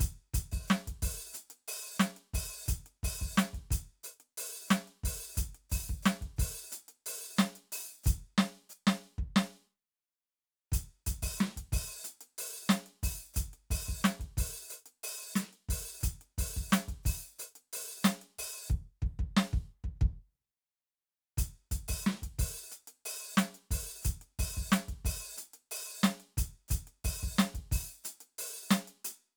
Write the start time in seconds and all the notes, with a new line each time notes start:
0.01 closed hi-hat, kick
0.34 open hi-hat, kick
0.52 open hi-hat, kick
0.68 snare, hi-hat pedal
0.88 kick, closed hi-hat
1.03 open hi-hat, kick
1.34 closed hi-hat, hi-hat pedal
1.51 closed hi-hat
1.68 open hi-hat
1.97 closed hi-hat, snare, hi-hat pedal
2.17 closed hi-hat
2.34 open hi-hat, kick
2.66 closed hi-hat, kick, hi-hat pedal
2.87 closed hi-hat
3.04 open hi-hat, kick
3.22 kick
3.36 closed hi-hat, snare, hi-hat pedal
3.54 kick, closed hi-hat
3.71 open hi-hat, kick
4.04 open hi-hat, hi-hat pedal
4.21 closed hi-hat
4.38 open hi-hat
4.68 closed hi-hat, snare, hi-hat pedal
4.88 closed hi-hat
5.04 open hi-hat, kick
5.35 closed hi-hat, kick, hi-hat pedal
5.55 closed hi-hat
5.70 open hi-hat, kick, hi-hat pedal
5.90 kick
6.03 closed hi-hat, snare, hi-hat pedal
6.22 kick, closed hi-hat
6.37 open hi-hat, kick, hi-hat pedal
6.72 closed hi-hat, hi-hat pedal
6.89 closed hi-hat
7.07 open hi-hat
7.37 closed hi-hat, snare, hi-hat pedal
7.56 closed hi-hat
7.73 open hi-hat
8.04 closed hi-hat, kick, hi-hat pedal
8.39 snare
8.70 hi-hat pedal
8.88 snare
9.19 kick
9.37 snare
10.73 closed hi-hat, kick
11.07 closed hi-hat, kick
11.23 open hi-hat, kick
11.39 snare, hi-hat pedal
11.57 kick, closed hi-hat
11.73 open hi-hat, kick
12.04 closed hi-hat, hi-hat pedal
12.22 closed hi-hat
12.39 open hi-hat
12.67 closed hi-hat, snare, hi-hat pedal
12.87 closed hi-hat
13.03 open hi-hat, kick, hi-hat pedal
13.34 closed hi-hat, kick, hi-hat pedal
13.54 closed hi-hat
13.71 open hi-hat, kick
13.89 kick
14.02 closed hi-hat, snare, hi-hat pedal
14.20 kick, closed hi-hat
14.38 open hi-hat, kick
14.71 open hi-hat, hi-hat pedal
14.87 closed hi-hat
15.04 open hi-hat
15.34 closed hi-hat, snare, hi-hat pedal
15.53 closed hi-hat
15.69 open hi-hat, kick
16.01 closed hi-hat, kick, hi-hat pedal
16.22 closed hi-hat
16.39 open hi-hat, kick
16.57 kick
16.70 closed hi-hat, snare, hi-hat pedal
16.89 kick, closed hi-hat
17.04 open hi-hat, kick, hi-hat pedal
17.39 open hi-hat, hi-hat pedal
17.56 closed hi-hat
17.74 open hi-hat
18.03 closed hi-hat, snare, hi-hat pedal
18.22 closed hi-hat
18.39 open hi-hat, kick
18.69 kick, hi-hat pedal
19.03 kick
19.07 kick, crash
19.20 kick
19.37 snare
19.54 kick
19.85 kick
19.98 kick
20.02 kick
21.38 closed hi-hat, kick
21.72 open hi-hat, kick
21.89 open hi-hat, kick
22.05 snare, hi-hat pedal
22.23 kick, closed hi-hat
22.39 open hi-hat, kick
22.71 closed hi-hat, hi-hat pedal
22.88 closed hi-hat
23.06 open hi-hat
23.35 closed hi-hat, snare, hi-hat pedal
23.55 closed hi-hat
23.71 open hi-hat, kick
24.03 closed hi-hat, kick, hi-hat pedal
24.22 closed hi-hat
24.40 open hi-hat, kick
24.58 kick
24.70 closed hi-hat, snare, hi-hat pedal
24.89 kick, closed hi-hat
25.05 open hi-hat, kick
25.37 closed hi-hat, hi-hat pedal
25.54 closed hi-hat
25.72 open hi-hat
26.02 closed hi-hat, snare, hi-hat pedal
26.21 closed hi-hat
26.38 open hi-hat, kick
26.69 closed hi-hat, kick, hi-hat pedal
26.88 closed hi-hat
27.05 open hi-hat, kick
27.23 kick
27.36 closed hi-hat, snare, hi-hat pedal
27.55 kick, closed hi-hat
27.72 open hi-hat, kick
28.05 closed hi-hat, hi-hat pedal
28.21 closed hi-hat
28.39 open hi-hat
28.70 closed hi-hat, snare, hi-hat pedal
28.88 closed hi-hat
29.05 open hi-hat